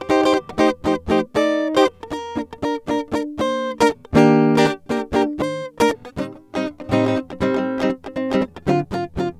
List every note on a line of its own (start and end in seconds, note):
0.00 0.11 C5
0.10 0.25 D#4
0.10 0.20 G4
0.10 0.34 C5
0.21 0.28 G4
0.26 0.43 D#4
0.26 0.43 G4
0.35 0.45 B4
0.59 0.76 A3
0.59 0.76 D#4
0.59 0.77 G4
0.59 0.77 C5
0.85 1.01 F3
0.85 1.00 A3
0.85 1.01 D#4
0.85 1.01 G4
0.85 1.01 C5
1.09 1.27 F3
1.09 1.29 A3
1.09 1.27 D#4
1.09 1.27 G4
1.13 1.29 C5
1.36 1.75 A3
1.36 1.79 D#4
1.36 1.68 A4
1.36 1.73 D5
1.76 1.91 D#4
1.76 1.93 G4
1.76 1.93 C5
2.14 2.48 A#4
2.64 2.82 D4
2.64 2.82 A#4
2.90 3.06 D4
2.90 3.07 A#4
3.14 3.40 D4
3.14 3.29 A#4
3.40 3.75 A#3
3.40 3.80 D4
3.40 3.77 C5
3.82 3.96 D4
3.82 3.98 A#4
4.16 4.76 D#3
4.16 4.79 A#3
4.16 4.59 D4
4.16 4.59 G4
4.57 4.68 D4
4.57 4.67 G4
4.57 4.70 A#4
4.67 4.82 D4
4.67 4.82 G4
4.91 5.07 A#3
4.91 5.07 D4
4.91 5.07 G4
4.91 5.07 A#4
5.13 5.30 D#3
5.13 5.34 A#3
5.13 5.40 D4
5.13 5.31 G4
5.13 5.28 A#4
5.39 5.71 D#3
5.39 5.54 A3
5.39 5.74 D4
5.39 5.73 C5
5.82 5.97 D4
5.82 5.99 A#4
6.19 6.36 G3
6.19 6.37 C4
6.19 6.33 D#4
6.58 6.73 C4
6.58 6.74 D#4
6.83 6.94 C4
6.91 7.20 A2
6.91 7.25 G3
6.91 7.08 C4
6.91 7.09 D#4
7.08 7.28 C4
7.08 7.25 D#4
7.42 7.96 A2
7.42 7.58 G3
7.42 7.56 C4
7.56 7.86 G3
7.56 7.82 C4
7.82 8.02 C4
7.86 7.98 G3
8.17 8.27 C4
8.27 8.36 C4
8.36 8.49 G3
8.36 8.52 C4
8.68 8.87 D3
8.68 8.87 C4
8.68 8.88 F4
8.92 9.10 D3
8.92 9.10 C4
8.92 9.11 F4
9.18 9.34 D3
9.18 9.33 C4
9.18 9.35 F4